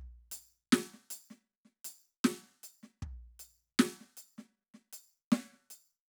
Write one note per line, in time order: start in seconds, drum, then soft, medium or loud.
0.02 kick soft
0.33 percussion medium
0.73 snare loud
0.95 snare soft
1.11 percussion loud
1.31 snare soft
1.66 snare soft
1.86 percussion medium
2.25 snare loud
2.44 snare soft
2.64 percussion medium
2.84 snare soft
3.01 kick medium
3.01 percussion soft
3.40 percussion medium
3.80 snare loud
4.02 snare soft
4.18 percussion medium
4.39 snare soft
4.75 snare soft
4.94 percussion medium
5.33 snare loud
5.54 snare soft
5.71 percussion medium